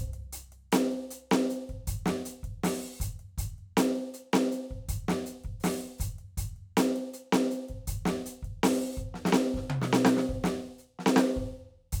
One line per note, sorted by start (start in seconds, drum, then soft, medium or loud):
0.13 closed hi-hat soft
0.33 closed hi-hat loud
0.52 closed hi-hat soft
0.72 closed hi-hat loud
0.72 snare loud
0.92 closed hi-hat soft
1.10 closed hi-hat loud
1.31 snare loud
1.31 closed hi-hat soft
1.50 closed hi-hat medium
1.69 kick soft
1.69 closed hi-hat soft
1.87 closed hi-hat loud
1.87 kick medium
2.06 snare loud
2.25 closed hi-hat loud
2.43 kick soft
2.43 closed hi-hat soft
2.63 open hi-hat loud
2.63 snare loud
2.98 closed hi-hat loud
2.98 kick medium
2.98 hi-hat pedal medium
3.19 closed hi-hat soft
3.38 closed hi-hat loud
3.38 kick medium
3.58 closed hi-hat soft
3.77 closed hi-hat loud
3.77 snare loud
3.95 closed hi-hat soft
4.14 closed hi-hat medium
4.33 snare loud
4.33 closed hi-hat medium
4.52 closed hi-hat medium
4.70 kick soft
4.70 closed hi-hat soft
4.88 closed hi-hat loud
4.88 kick medium
5.08 snare loud
5.26 closed hi-hat medium
5.44 kick medium
5.44 closed hi-hat soft
5.60 open hi-hat loud
5.60 snare loud
5.60 hi-hat pedal soft
5.98 closed hi-hat loud
5.98 kick medium
5.98 hi-hat pedal medium
6.18 closed hi-hat soft
6.37 closed hi-hat loud
6.37 kick medium
6.56 closed hi-hat soft
6.77 closed hi-hat loud
6.77 snare loud
6.96 closed hi-hat soft
7.13 closed hi-hat medium
7.32 snare loud
7.32 closed hi-hat medium
7.51 closed hi-hat medium
7.68 kick soft
7.68 closed hi-hat soft
7.87 closed hi-hat loud
7.87 kick medium
8.05 snare loud
8.26 closed hi-hat loud
8.42 kick soft
8.42 closed hi-hat soft
8.63 open hi-hat loud
8.63 snare loud
8.97 kick medium
8.97 hi-hat pedal soft
9.14 snare medium
9.25 snare loud
9.32 snare loud
9.32 hi-hat pedal medium
9.54 kick medium
9.54 snare soft
9.62 snare soft
9.70 high tom loud
9.74 kick soft
9.82 snare loud
9.93 snare loud
10.05 snare loud
10.17 snare medium
10.29 kick medium
10.44 snare loud
10.78 hi-hat pedal soft
10.99 snare medium
11.06 snare loud
11.36 kick medium
11.92 closed hi-hat loud
11.92 kick medium